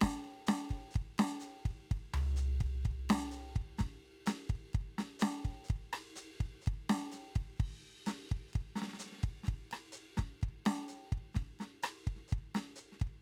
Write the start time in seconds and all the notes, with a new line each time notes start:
0.01 kick, snare, ride
0.06 cross-stick
0.24 ride
0.47 snare, hi-hat pedal, ride
0.69 kick, ride
0.80 snare
0.91 hi-hat pedal, ride
0.96 kick
1.01 kick
1.18 snare, ride
1.40 hi-hat pedal, ride
1.65 kick, ride
1.71 kick
1.91 kick, ride
1.97 kick
2.14 floor tom, ride
2.36 hi-hat pedal
2.61 kick, ride
2.66 kick
2.85 kick, ride
2.91 kick
3.09 snare, ride
3.16 snare
3.31 hi-hat pedal
3.36 snare
3.41 snare
3.56 kick, ride
3.61 kick
3.78 kick, snare, hi-hat pedal, ride
3.86 kick
4.26 snare, hi-hat pedal, ride
4.50 kick, ride
4.55 kick
4.66 snare
4.74 kick, ride
4.81 kick
4.98 snare, ride
5.19 snare, hi-hat pedal, ride
5.45 kick, ride
5.50 kick, snare
5.64 hi-hat pedal
5.69 kick, ride
5.76 kick
5.93 cross-stick, ride
6.16 hi-hat pedal, ride
6.40 kick, ride
6.45 kick
6.62 hi-hat pedal
6.66 kick, ride
6.74 kick
6.90 snare, ride
6.98 snare
7.12 snare, hi-hat pedal, ride
7.36 kick, ride
7.41 kick
7.57 kick, hi-hat pedal, crash
8.06 snare, hi-hat pedal, ride
8.29 kick, ride
8.35 kick, snare
8.48 hi-hat pedal
8.53 kick, ride
8.61 kick
8.76 snare, ride
8.82 snare
8.87 snare
8.94 snare
8.99 snare, hi-hat pedal, ride
9.06 snare
9.12 snare
9.19 snare
9.23 kick, ride
9.29 kick
9.44 snare, ride
9.48 kick
9.54 kick
9.71 cross-stick, ride
9.92 hi-hat pedal, ride
10.17 kick, snare, ride
10.24 kick
10.42 kick, ride
10.48 kick
10.66 snare, ride
10.78 snare
10.88 hi-hat pedal
10.93 snare
10.98 snare
11.12 kick, ride
11.17 kick
11.33 kick, snare, hi-hat pedal, ride
11.42 kick
11.59 snare, ride
11.83 cross-stick, hi-hat pedal, ride
12.07 kick
12.16 snare
12.28 hi-hat pedal, ride
12.32 kick
12.38 kick
12.55 snare, ride
12.76 hi-hat pedal, ride
12.92 snare
13.00 kick, ride
13.07 kick